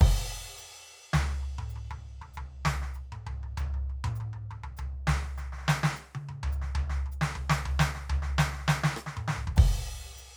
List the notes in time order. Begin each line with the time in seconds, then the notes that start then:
0.00 kick, crash
0.58 hi-hat pedal
1.13 snare, floor tom, hi-hat pedal
1.28 snare
1.42 floor tom
1.58 mid tom
1.69 hi-hat pedal
1.76 floor tom
1.91 floor tom
2.21 floor tom
2.33 floor tom, hi-hat pedal
2.65 snare, floor tom
2.82 snare
2.94 floor tom, hi-hat pedal
3.12 mid tom
3.27 floor tom
3.43 mid tom
3.57 floor tom, hi-hat pedal
3.74 mid tom
3.90 floor tom
4.04 mid tom
4.15 hi-hat pedal
4.20 floor tom
4.33 mid tom
4.51 floor tom
4.63 floor tom
4.77 floor tom, hi-hat pedal
5.07 snare, floor tom
5.22 snare
5.37 snare, hi-hat pedal
5.52 snare
5.58 snare
5.63 snare
5.68 snare
5.83 snare
5.96 hi-hat pedal
6.00 snare
6.15 high tom
6.29 mid tom
6.43 floor tom
6.52 hi-hat pedal
6.62 snare
6.75 floor tom
6.90 snare
7.06 floor tom
7.12 hi-hat pedal
7.21 snare
7.35 floor tom
7.50 snare
7.65 floor tom
7.79 snare, hi-hat pedal
7.95 snare
8.10 floor tom
8.22 snare
8.38 snare, hi-hat pedal
8.52 snare
8.59 snare
8.68 snare
8.84 snare
8.96 cross-stick, hi-hat pedal
9.06 snare
9.17 mid tom
9.28 snare
9.36 floor tom
9.47 kick, floor tom
9.56 kick, crash
10.18 hi-hat pedal